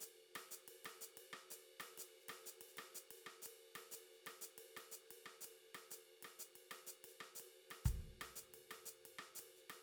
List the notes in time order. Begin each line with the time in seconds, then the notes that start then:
0.01 hi-hat pedal, ride
0.36 cross-stick, ride
0.52 hi-hat pedal
0.68 ride
0.85 cross-stick, ride
1.02 hi-hat pedal
1.18 ride
1.34 cross-stick
1.51 hi-hat pedal, ride
1.80 cross-stick, ride
1.98 hi-hat pedal, ride
2.20 hi-hat pedal
2.29 cross-stick, ride
2.47 hi-hat pedal
2.62 ride
2.68 hi-hat pedal
2.78 cross-stick, ride
2.95 hi-hat pedal
3.11 ride
3.17 hi-hat pedal
3.27 cross-stick
3.43 hi-hat pedal, ride
3.76 cross-stick, ride
3.92 hi-hat pedal, ride
4.14 hi-hat pedal
4.27 cross-stick, ride
4.42 hi-hat pedal
4.59 ride
4.77 cross-stick, ride
4.92 hi-hat pedal
5.11 ride
5.26 cross-stick
5.41 hi-hat pedal, ride
5.75 cross-stick, ride
5.91 hi-hat pedal, ride
6.23 cross-stick, ride
6.40 hi-hat pedal
6.56 ride
6.72 cross-stick, ride
6.87 hi-hat pedal
7.05 hi-hat pedal, ride
7.21 cross-stick
7.36 hi-hat pedal
7.40 ride
7.71 cross-stick, ride
7.85 kick, hi-hat pedal, ride
8.22 cross-stick, ride
8.36 hi-hat pedal
8.54 ride
8.71 cross-stick, ride
8.86 hi-hat pedal
9.06 ride
9.19 cross-stick
9.36 hi-hat pedal
9.40 ride
9.57 hi-hat pedal
9.70 cross-stick, ride